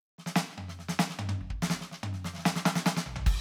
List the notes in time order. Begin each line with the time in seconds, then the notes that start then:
0.18 snare
0.26 snare
0.36 snare
0.50 snare
0.58 high tom
0.68 snare, hi-hat pedal
0.79 snare
0.89 snare
0.99 snare
1.09 snare
1.19 high tom
1.41 kick
1.50 kick
1.62 snare
1.70 snare
1.81 snare
1.91 snare
2.03 high tom
2.13 snare
2.24 snare
2.34 snare
2.38 snare
2.42 snare
2.45 snare
2.56 snare
2.65 snare
2.76 snare
2.86 snare
2.97 snare
3.06 floor tom
3.16 floor tom
3.26 kick, ride